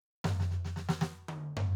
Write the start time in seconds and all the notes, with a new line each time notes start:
0.24 snare, floor tom
0.40 snare
0.51 snare
0.65 snare
0.76 snare
0.89 snare
1.01 snare
1.28 high tom
1.57 floor tom